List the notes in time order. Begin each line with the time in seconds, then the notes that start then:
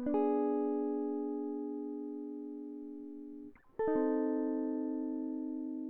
0.00 B3
0.07 D4
0.14 G#4
3.79 A4
3.88 D#4
3.96 C4